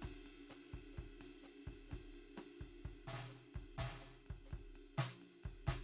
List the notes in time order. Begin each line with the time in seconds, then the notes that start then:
0.01 kick, cross-stick, snare, hi-hat pedal, ride
0.10 kick
0.26 ride
0.40 snare
0.50 snare, hi-hat pedal, ride
0.70 kick, hi-hat pedal, ride
0.79 kick
0.93 hi-hat pedal
0.98 kick, ride
1.04 kick
1.20 snare, ride
1.43 hi-hat pedal, ride
1.67 kick, ride
1.73 kick
1.88 snare, hi-hat pedal, ride
1.93 kick
1.98 kick
2.14 ride
2.25 snare
2.37 cross-stick, snare, hi-hat pedal, ride
2.61 kick, ride
2.66 kick
2.85 kick, ride
2.91 kick
3.07 snare, ride
3.13 snare
3.18 snare
3.24 snare
3.29 snare, hi-hat pedal, ride
3.35 snare
3.41 snare
3.47 snare
3.51 snare, ride
3.56 kick
3.62 kick
3.78 kick, snare, ride
3.84 kick, snare
3.93 snare
3.98 snare, hi-hat pedal
4.02 snare, ride
4.06 snare
4.09 snare
4.11 snare
4.17 snare
4.26 kick, ride
4.36 kick
4.46 hi-hat pedal
4.51 kick, ride
4.59 kick
4.76 ride
4.94 snare, hi-hat pedal, ride
5.22 ride
5.32 snare
5.44 kick, ride
5.51 kick
5.67 kick, snare, ride